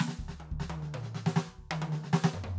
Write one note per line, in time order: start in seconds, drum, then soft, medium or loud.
0.01 snare loud
0.08 snare medium
0.19 kick medium
0.29 snare medium
0.40 high tom medium
0.52 kick medium
0.60 snare medium
0.70 closed hi-hat soft
0.70 high tom loud
0.83 kick soft
0.83 snare soft
0.94 mid tom medium
1.03 snare soft
1.15 snare medium
1.27 snare loud
1.36 snare loud
1.49 kick soft
1.59 kick soft
1.71 high tom loud
1.82 high tom loud
1.93 snare medium
2.04 snare medium
2.13 snare loud
2.24 snare loud
2.34 floor tom medium
2.44 floor tom loud